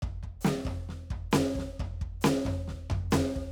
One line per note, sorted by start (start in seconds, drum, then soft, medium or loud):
0.02 kick medium
0.02 mid tom medium
0.23 kick soft
0.23 mid tom soft
0.41 snare loud
0.41 hi-hat pedal medium
0.65 kick medium
0.65 mid tom loud
0.89 snare soft
1.10 kick medium
1.10 mid tom medium
1.31 snare loud
1.31 hi-hat pedal medium
1.31 mid tom medium
1.55 kick medium
1.55 snare medium
1.79 kick medium
1.79 mid tom medium
2.01 kick medium
2.01 mid tom soft
2.21 snare loud
2.21 hi-hat pedal medium
2.45 kick medium
2.45 mid tom loud
2.68 kick soft
2.68 snare soft
2.90 kick medium
2.90 mid tom loud
3.11 snare loud
3.11 hi-hat pedal medium
3.11 mid tom loud
3.35 kick medium
3.35 floor tom medium